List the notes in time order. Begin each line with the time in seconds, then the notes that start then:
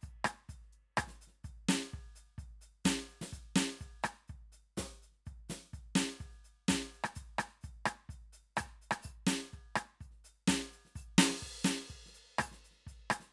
0.01 open hi-hat, kick, hi-hat pedal
0.25 closed hi-hat, cross-stick
0.49 closed hi-hat, kick
0.62 snare
0.73 closed hi-hat
0.97 closed hi-hat, kick, cross-stick
1.08 snare
1.21 closed hi-hat
1.27 snare
1.44 closed hi-hat, kick
1.69 closed hi-hat, snare
1.78 snare
1.91 open hi-hat, kick
2.15 closed hi-hat
2.38 closed hi-hat, kick
2.61 closed hi-hat
2.85 closed hi-hat, kick, snare
2.94 snare
3.09 closed hi-hat
3.21 snare
3.33 closed hi-hat, kick
3.56 closed hi-hat, snare
3.63 snare
3.78 closed hi-hat, kick, hi-hat pedal
4.03 closed hi-hat, cross-stick
4.27 closed hi-hat, kick
4.52 closed hi-hat, snare
4.77 closed hi-hat, kick, snare
5.02 closed hi-hat
5.12 snare
5.26 closed hi-hat, kick
5.49 closed hi-hat, snare
5.73 closed hi-hat, kick
5.95 closed hi-hat, snare
6.04 snare
6.19 closed hi-hat, kick
6.30 snare
6.33 snare
6.44 closed hi-hat
6.68 closed hi-hat, kick, snare
6.74 snare
6.93 closed hi-hat
7.04 cross-stick
7.15 closed hi-hat, kick
7.38 closed hi-hat, cross-stick
7.61 closed hi-hat, kick, hi-hat pedal
7.85 closed hi-hat, cross-stick
8.09 closed hi-hat, kick
8.33 closed hi-hat
8.56 open hi-hat, kick, cross-stick
8.81 closed hi-hat
8.91 cross-stick
9.02 open hi-hat, kick
9.27 closed hi-hat, snare
9.52 open hi-hat, kick, hi-hat pedal
9.76 closed hi-hat, cross-stick
10.00 open hi-hat, kick
10.11 snare
10.15 snare
10.24 closed hi-hat
10.48 open hi-hat, kick, snare
10.55 snare
10.72 closed hi-hat
10.85 snare
10.95 open hi-hat, kick, hi-hat pedal
11.18 snare, crash
11.30 snare
11.40 open hi-hat, kick
11.63 closed hi-hat, snare
11.90 kick, open hi-hat
12.06 snare
12.10 snare
12.14 closed hi-hat
12.38 open hi-hat, kick, cross-stick
12.52 snare
12.64 closed hi-hat
12.71 snare
12.75 snare
12.78 snare
12.84 closed hi-hat, kick, snare
13.10 closed hi-hat, cross-stick
13.20 snare